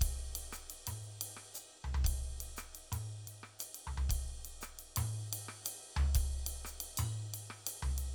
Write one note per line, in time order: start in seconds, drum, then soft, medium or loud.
0.01 kick medium
0.01 ride loud
0.35 ride loud
0.53 cross-stick medium
0.53 hi-hat pedal medium
0.70 ride medium
0.87 mid tom medium
0.87 ride loud
1.02 hi-hat pedal soft
1.21 ride loud
1.37 cross-stick medium
1.54 hi-hat pedal medium
1.54 ride bell medium
1.84 floor tom medium
1.94 floor tom loud
2.04 kick medium
2.04 ride loud
2.40 ride medium
2.56 cross-stick medium
2.56 hi-hat pedal medium
2.75 ride medium
2.92 mid tom loud
2.92 ride medium
3.27 ride medium
3.43 cross-stick medium
3.59 hi-hat pedal medium
3.59 ride loud
3.74 ride medium
3.87 floor tom medium
3.97 floor tom medium
4.09 kick medium
4.09 ride loud
4.45 ride medium
4.61 cross-stick medium
4.61 hi-hat pedal medium
4.61 ride soft
4.79 ride medium
4.96 mid tom loud
4.96 ride loud
5.33 ride loud
5.48 cross-stick medium
5.65 hi-hat pedal medium
5.65 ride loud
5.96 floor tom loud
6.15 kick medium
6.15 ride loud
6.46 ride loud
6.65 cross-stick medium
6.65 hi-hat pedal medium
6.80 ride loud
6.97 mid tom loud
6.97 ride bell loud
7.34 ride loud
7.50 cross-stick medium
7.66 hi-hat pedal medium
7.66 ride loud
7.82 floor tom loud
7.98 ride medium